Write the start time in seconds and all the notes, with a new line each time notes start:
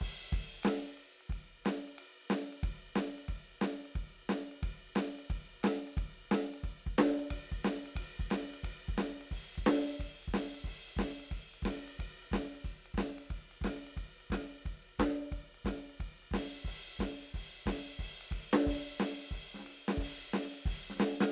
0.00 kick, ride
0.32 kick, ride
0.63 snare, ride
0.97 ride
1.21 ride
1.29 kick, ride
1.64 snare, hi-hat pedal, ride
1.88 ride
1.98 ride
2.30 snare, hi-hat pedal, ride
2.52 ride
2.63 kick, ride
2.95 snare, hi-hat pedal, ride
3.18 ride
3.28 kick, ride
3.61 snare, hi-hat pedal, ride
3.85 ride
3.95 kick, ride
4.29 snare, hi-hat pedal, ride
4.51 ride
4.63 kick, ride
4.95 snare, hi-hat pedal, ride
5.18 ride
5.30 kick, ride
5.63 snare, hi-hat pedal, ride
5.87 ride
5.97 kick, ride
6.31 snare, hi-hat pedal, ride
6.54 ride
6.63 kick, hi-hat pedal, ride
6.86 kick
6.98 snare, ride
7.19 ride
7.30 kick, ride
7.52 kick
7.64 snare, ride
7.86 ride
7.95 kick, ride
8.19 kick
8.30 snare, ride
8.53 ride
8.63 kick, ride
8.88 kick
8.98 snare, ride
9.21 ride
9.31 kick, ride
9.55 kick, ride
9.66 snare, ride
9.89 ride
9.99 kick, ride
10.23 ride
10.28 kick
10.34 snare, ride
10.54 ride
10.64 kick, ride
10.88 ride
10.96 kick, snare, ride
11.20 ride
11.31 kick, ride
11.54 ride
11.62 kick, snare, ride
11.88 ride
11.99 kick, ride
12.22 ride
12.31 kick, snare, ride
12.55 ride
12.64 kick, ride bell
12.86 ride
12.94 kick, snare, ride bell
13.18 ride
13.30 kick, ride
13.51 ride
13.61 kick, snare, ride
13.87 ride
13.97 kick, ride
14.20 ride
14.30 kick, snare, ride
14.65 kick, ride
14.89 ride
14.99 kick, snare, ride
15.21 ride
15.32 kick, ride
15.54 ride
15.64 kick, snare, ride
15.89 ride
16.00 kick, ride
16.22 ride
16.31 kick, snare, ride
16.56 ride
16.64 kick, ride
16.90 ride
16.99 kick, snare, ride
17.23 ride
17.34 kick, ride
17.58 ride
17.66 kick, snare, ride
17.89 ride
17.99 kick, ride
18.21 ride
18.31 kick, ride
18.53 snare
18.66 kick, ride
19.00 snare, ride
19.22 ride
19.31 kick, ride
19.54 snare
19.59 snare
19.66 hi-hat pedal, ride
19.88 snare, ride
19.97 kick, ride
20.33 snare, hi-hat pedal, ride
20.54 ride
20.65 kick, ride
20.90 snare
20.96 snare
21.00 snare, hi-hat pedal
21.20 snare